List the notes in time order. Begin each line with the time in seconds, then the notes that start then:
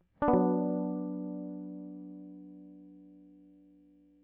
0.22 D4
0.28 B3
0.34 F#3